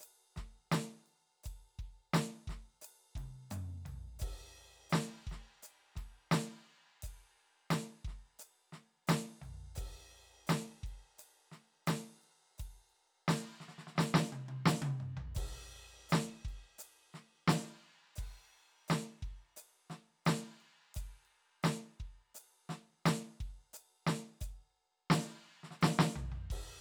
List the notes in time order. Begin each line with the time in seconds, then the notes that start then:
0.01 hi-hat pedal, ride
0.37 kick, snare, ride
0.72 snare, hi-hat pedal, ride
1.07 ride
1.44 kick, hi-hat pedal, ride
1.80 kick, ride
2.14 snare, hi-hat pedal, ride
2.48 kick, snare, ride
2.82 hi-hat pedal, ride
3.16 kick, high tom, ride
3.51 hi-hat pedal, mid tom, ride
3.86 floor tom, ride
4.20 kick, hi-hat pedal, crash
4.91 snare, hi-hat pedal, ride
5.28 kick, ride
5.32 snare
5.63 hi-hat pedal, ride
5.96 kick, snare, ride
6.32 snare, hi-hat pedal, ride
7.03 kick, hi-hat pedal, ride
7.71 snare, hi-hat pedal, ride
8.05 kick, snare, ride
8.40 hi-hat pedal, ride
8.73 snare, ride
9.08 snare, hi-hat pedal, ride
9.42 floor tom, ride
9.76 kick, hi-hat pedal, crash
10.48 snare, hi-hat pedal, ride
10.84 kick, ride
11.19 hi-hat pedal, ride
11.52 snare, ride
11.88 snare, hi-hat pedal, ride
12.22 ride
12.59 kick, hi-hat pedal, ride
12.90 ride
13.29 snare, hi-hat pedal, ride
13.61 snare
13.69 snare
13.79 snare
13.88 snare
13.96 snare
13.99 snare, hi-hat pedal
14.15 snare
14.33 high tom
14.49 high tom
14.67 snare, hi-hat pedal
14.83 high tom
15.01 mid tom
15.18 floor tom
15.36 kick, hi-hat pedal, crash
16.10 snare, hi-hat pedal, ride
16.46 kick, ride
16.79 hi-hat pedal, ride
17.14 snare, ride
17.49 snare, hi-hat pedal, ride
18.16 kick, hi-hat pedal, ride, crash
18.89 snare, hi-hat pedal, ride
19.23 kick, ride
19.57 hi-hat pedal, ride
19.91 snare, ride
20.26 snare, hi-hat pedal, ride
20.61 ride
20.95 kick, hi-hat pedal, ride
21.26 ride
21.64 snare, hi-hat pedal, ride
22.00 kick, ride
22.35 hi-hat pedal, ride
22.70 snare, ride
23.06 snare, hi-hat pedal, ride
23.41 kick, ride
23.74 hi-hat pedal, ride
24.08 snare, ride
24.42 kick, hi-hat pedal, ride
24.76 ride
25.11 snare, hi-hat pedal, ride
25.64 snare
25.72 snare
25.79 snare, hi-hat pedal
25.83 snare
26.00 snare
26.16 floor tom
26.33 floor tom
26.51 kick, crash